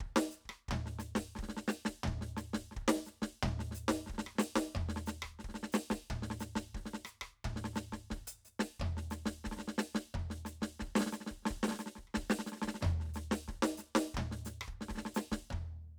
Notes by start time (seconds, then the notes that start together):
0.01 kick, snare
0.17 snare
0.31 snare, hi-hat pedal
0.46 kick, cross-stick
0.69 kick, floor tom
0.86 snare
0.99 snare, hi-hat pedal
1.16 kick, snare
1.36 kick, snare
1.43 snare
1.49 snare
1.57 snare
1.68 snare, hi-hat pedal
1.86 kick, snare
2.04 kick, floor tom
2.22 snare
2.37 snare, hi-hat pedal
2.54 kick, snare
2.72 snare
2.77 kick
2.88 snare
2.96 snare
3.06 snare, hi-hat pedal
3.22 kick, snare
3.43 kick, floor tom
3.60 snare
3.72 snare, hi-hat pedal
3.89 kick, snare
4.07 kick, snare
4.14 snare
4.19 snare
4.27 cross-stick
4.36 snare
4.39 snare, hi-hat pedal
4.56 kick, snare
4.75 kick, floor tom
4.89 snare
4.97 snare
5.07 snare, hi-hat pedal
5.23 kick, cross-stick
5.39 snare
5.45 kick
5.49 snare
5.55 snare
5.63 snare
5.73 snare, hi-hat pedal
5.91 kick, snare
6.11 kick, floor tom
6.23 snare
6.31 snare
6.40 snare, hi-hat pedal
6.56 kick, snare
6.75 kick, snare
6.94 snare
7.05 cross-stick, hi-hat pedal
7.22 kick, cross-stick
7.45 kick, floor tom
7.57 snare
7.65 snare
7.74 snare, hi-hat pedal
7.76 snare
7.92 kick, snare
8.11 kick, snare
8.28 closed hi-hat
8.45 snare, hi-hat pedal
8.60 kick, snare
8.80 kick, floor tom
8.97 snare
9.11 snare, hi-hat pedal
9.26 kick, snare
9.45 kick, snare
9.52 snare
9.57 snare
9.59 snare
9.68 snare
9.79 snare, hi-hat pedal
9.95 kick, snare
10.15 kick, floor tom
10.31 snare
10.46 snare, hi-hat pedal
10.61 kick, snare
10.80 kick, snare
10.96 snare
10.99 snare
11.01 snare
11.07 snare
11.13 snare, hi-hat pedal
11.21 snare
11.27 snare
11.31 kick
11.43 snare
11.46 snare
11.51 kick
11.63 snare
11.69 snare
11.72 snare
11.74 snare
11.79 snare, hi-hat pedal
11.87 snare
11.96 kick, snare
12.08 cross-stick
12.15 kick, snare
12.30 snare
12.39 snare
12.47 snare, hi-hat pedal
12.53 snare
12.57 snare
12.62 kick, snare
12.68 snare
12.75 snare
12.82 kick, snare, floor tom
13.01 snare
13.05 snare
13.09 snare
13.14 snare, hi-hat pedal
13.31 kick, snare
13.48 kick, snare
13.63 snare
13.78 snare, hi-hat pedal
13.95 kick, snare
14.15 kick, floor tom
14.32 snare
14.46 snare, hi-hat pedal
14.62 cross-stick
14.68 kick
14.81 snare
14.89 kick, snare
14.95 snare
14.98 snare
15.06 snare
15.15 snare, hi-hat pedal
15.32 kick, snare
15.51 kick, floor tom